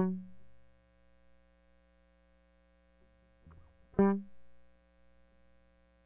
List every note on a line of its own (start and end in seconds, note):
0.00 0.32 F#3
4.00 4.28 G3